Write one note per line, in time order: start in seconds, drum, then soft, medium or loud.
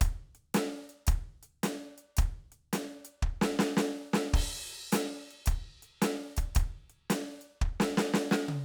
0.01 kick loud
0.01 closed hi-hat loud
0.35 closed hi-hat soft
0.54 snare loud
0.54 closed hi-hat loud
0.89 closed hi-hat medium
1.07 kick loud
1.07 closed hi-hat loud
1.43 closed hi-hat medium
1.63 snare loud
1.63 closed hi-hat loud
1.98 closed hi-hat medium
2.17 kick loud
2.17 closed hi-hat loud
2.52 closed hi-hat soft
2.73 snare loud
2.73 closed hi-hat loud
3.05 closed hi-hat medium
3.22 kick loud
3.41 snare loud
3.59 snare loud
3.77 snare loud
4.13 snare loud
4.34 kick loud
4.34 crash loud
4.92 closed hi-hat loud
4.92 snare loud
5.31 closed hi-hat soft
5.46 kick loud
5.46 closed hi-hat loud
5.82 closed hi-hat medium
6.02 snare loud
6.02 closed hi-hat loud
6.37 kick medium
6.37 closed hi-hat loud
6.55 kick loud
6.55 closed hi-hat loud
6.90 closed hi-hat soft
7.10 snare loud
7.10 closed hi-hat loud
7.41 closed hi-hat medium
7.61 kick loud
7.80 snare loud
7.97 snare loud
8.14 snare loud
8.31 snare loud
8.48 high tom loud